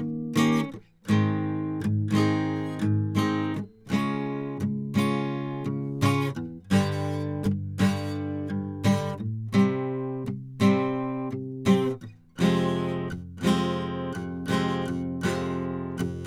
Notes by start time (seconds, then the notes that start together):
0.00 D#3 A#3
0.37 D#3 A#3 C#4
0.42 G4
1.10 G#2 D#3 G#3 C4
1.15 D#4
1.84 G#2 D#3
2.13 G#2 D#3 G#3
2.17 C4 D#4 G#4
2.82 G#2 D#3
3.17 D#3 G#3 C4 D#4
3.22 G#4
3.57 G#3
3.94 C#3 G#3 C#4 F4
4.62 C#3 G#3
4.96 C#3 G#3 C#4
5.00 F4
5.67 C#3 G#3
6.04 C#3 G#3 C#4 F4
6.38 E2
6.73 G2 D3 G3
7.46 G2 D3
7.81 G2 D3 G3
8.52 G2
8.86 D3 G3
9.22 A2
9.55 C3 G3 C4
10.28 C3
10.62 C3 G3 C4
11.33 C3
11.68 C3 G3 C4
12.03 E2
12.40 F2 C3 F3
12.45 G#3 C4
13.12 F2
13.40 F2
13.45 C3 F3 G#3
13.49 C4 F4
14.15 F2 C3
14.31 F3
14.38 C4
14.50 F2 C3 G#3
14.56 F4
14.88 F2 C3
15.25 F2 C3 F3
15.30 G#3
16.01 F2 C3